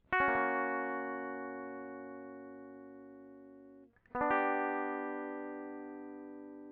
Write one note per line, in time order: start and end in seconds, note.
0.13 3.85 F#4
0.20 3.88 C#4
0.28 4.03 A#3
0.37 0.63 E3
4.15 6.72 B3
4.21 6.72 D4
4.31 6.72 G4